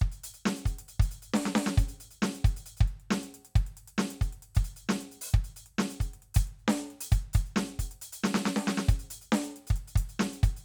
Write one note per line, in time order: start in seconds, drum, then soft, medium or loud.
0.01 kick loud
0.01 closed hi-hat soft
0.12 closed hi-hat soft
0.24 closed hi-hat loud
0.34 closed hi-hat medium
0.46 snare loud
0.56 closed hi-hat soft
0.66 closed hi-hat medium
0.66 kick medium
0.79 closed hi-hat medium
0.88 closed hi-hat medium
1.00 closed hi-hat medium
1.00 kick loud
1.11 closed hi-hat medium
1.22 closed hi-hat medium
1.34 snare loud
1.46 snare loud
1.55 snare loud
1.66 snare loud
1.77 closed hi-hat medium
1.77 kick loud
1.88 closed hi-hat medium
2.00 closed hi-hat medium
2.11 closed hi-hat medium
2.22 snare loud
2.34 closed hi-hat medium
2.44 closed hi-hat medium
2.44 kick loud
2.56 closed hi-hat medium
2.66 closed hi-hat medium
2.77 closed hi-hat medium
2.77 kick loud
2.88 closed hi-hat soft
3.00 closed hi-hat soft
3.11 snare loud
3.23 closed hi-hat medium
3.34 closed hi-hat medium
3.45 closed hi-hat medium
3.56 kick loud
3.56 closed hi-hat medium
3.67 closed hi-hat soft
3.77 closed hi-hat medium
3.88 closed hi-hat medium
3.98 snare loud
4.10 closed hi-hat medium
4.21 closed hi-hat medium
4.21 kick loud
4.33 closed hi-hat soft
4.42 closed hi-hat medium
4.55 closed hi-hat medium
4.55 kick loud
4.64 closed hi-hat medium
4.76 closed hi-hat medium
4.89 snare loud
5.01 closed hi-hat medium
5.11 closed hi-hat medium
5.21 open hi-hat loud
5.34 kick loud
5.34 closed hi-hat soft
5.44 closed hi-hat medium
5.56 closed hi-hat medium
5.66 closed hi-hat soft
5.78 snare loud
5.90 closed hi-hat medium
6.00 closed hi-hat medium
6.00 kick medium
6.14 closed hi-hat soft
6.22 closed hi-hat soft
6.34 closed hi-hat loud
6.34 kick loud
6.47 closed hi-hat soft
6.59 closed hi-hat soft
6.68 snare loud
6.90 closed hi-hat soft
7.01 closed hi-hat loud
7.12 closed hi-hat medium
7.12 kick loud
7.24 closed hi-hat soft
7.33 closed hi-hat medium
7.33 kick loud
7.45 closed hi-hat soft
7.56 snare loud
7.69 closed hi-hat soft
7.79 closed hi-hat loud
7.79 kick medium
7.91 closed hi-hat medium
8.02 closed hi-hat loud
8.12 closed hi-hat loud
8.24 snare loud
8.34 snare loud
8.46 snare loud
8.56 snare medium
8.67 snare loud
8.77 snare loud
8.89 closed hi-hat medium
8.89 kick loud
8.99 closed hi-hat medium
9.10 closed hi-hat loud
9.21 closed hi-hat soft
9.32 snare loud
9.44 closed hi-hat medium
9.56 closed hi-hat medium
9.67 closed hi-hat medium
9.67 kick loud
9.76 closed hi-hat medium
9.88 closed hi-hat medium
9.96 kick loud
9.96 closed hi-hat medium
10.09 closed hi-hat medium
10.19 snare loud
10.33 closed hi-hat medium
10.43 closed hi-hat medium
10.43 kick loud
10.57 closed hi-hat medium